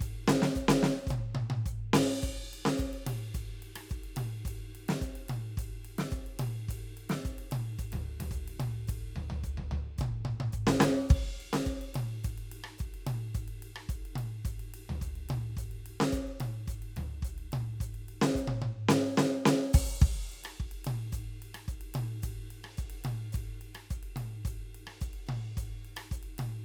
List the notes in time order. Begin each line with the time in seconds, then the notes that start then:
0.01 kick, hi-hat pedal, ride
0.28 snare
0.42 snare
0.56 kick, hi-hat pedal
0.69 snare
0.83 snare
1.07 kick, hi-hat pedal, high tom
1.35 high tom
1.50 high tom
1.66 kick, hi-hat pedal
1.94 snare, crash
2.22 kick, hi-hat pedal, ride
2.54 hi-hat pedal, ride
2.66 snare
2.78 kick, hi-hat pedal, ride
2.94 ride
3.07 high tom, ride
3.35 kick, hi-hat pedal, ride
3.63 ride
3.76 cross-stick, ride
3.90 kick, hi-hat pedal
4.04 ride
4.17 high tom, ride
4.45 kick, hi-hat pedal, ride
4.75 ride
4.89 snare, ride
5.02 kick, hi-hat pedal
5.16 ride
5.29 high tom, ride
5.58 kick, hi-hat pedal, ride
5.85 ride
5.99 snare, ride
6.11 kick, hi-hat pedal
6.27 ride
6.39 high tom, ride
6.69 kick, hi-hat pedal, ride
6.98 ride
7.10 snare, ride
7.25 kick, hi-hat pedal
7.39 ride
7.52 high tom, ride
7.79 kick, hi-hat pedal, ride
7.93 floor tom, ride
8.20 floor tom, ride
8.31 kick, hi-hat pedal
8.48 ride
8.60 high tom, ride
8.88 kick, hi-hat pedal, ride
9.16 floor tom
9.30 floor tom
9.44 kick, hi-hat pedal
9.58 floor tom
9.72 floor tom
9.98 kick, hi-hat pedal, high tom
10.25 high tom
10.41 high tom
10.53 kick, hi-hat pedal
10.67 snare
10.81 snare
11.09 kick, hi-hat pedal, ride
11.37 kick
11.41 ride
11.53 snare, ride
11.66 kick, hi-hat pedal
11.82 ride
11.95 high tom, ride
12.24 kick, hi-hat pedal, ride
12.38 ride
12.52 ride
12.64 cross-stick
12.79 kick, hi-hat pedal, ride
12.94 ride
13.07 high tom, ride
13.35 kick, hi-hat pedal, ride
13.48 ride
13.63 ride
13.76 cross-stick
13.89 kick, hi-hat pedal, ride
14.06 ride
14.16 high tom, ride
14.45 kick, hi-hat pedal, ride
14.60 ride
14.74 ride
14.90 floor tom
15.02 kick, hi-hat pedal, ride
15.16 ride
15.29 high tom, ride
15.57 kick, hi-hat pedal, ride
15.72 ride
15.86 ride
16.01 snare
16.13 kick, hi-hat pedal, ride
16.28 ride
16.41 high tom, ride
16.68 kick, hi-hat pedal, ride
16.83 ride
16.97 floor tom, ride
17.23 kick, hi-hat pedal, ride
17.38 ride
17.53 high tom, ride
17.81 kick, hi-hat pedal, ride
17.95 ride
18.09 ride
18.22 snare
18.36 kick, hi-hat pedal
18.48 high tom
18.62 high tom
18.89 snare
19.18 snare
19.46 snare
19.74 open hi-hat, kick
20.02 kick, ride
20.32 ride
20.44 cross-stick, ride
20.58 kick, hi-hat pedal
20.72 ride
20.85 high tom, ride
21.13 kick, hi-hat pedal, ride
21.43 ride
21.55 cross-stick, ride
21.68 kick, hi-hat pedal
21.81 ride
21.95 high tom, ride
22.23 kick, hi-hat pedal, ride
22.51 ride
22.64 cross-stick, ride
22.78 kick, hi-hat pedal
22.90 ride
23.05 high tom, ride
23.33 kick, hi-hat pedal, ride
23.62 ride
23.75 cross-stick, ride
23.91 kick, hi-hat pedal
24.03 ride
24.16 high tom, ride
24.45 kick, hi-hat pedal, ride
24.75 ride
24.87 cross-stick, ride
25.01 kick, hi-hat pedal
25.14 ride
25.27 high tom, ride
25.58 kick, hi-hat pedal, ride
25.85 ride
25.97 cross-stick, ride
26.12 kick, hi-hat pedal
26.23 ride
26.39 high tom, ride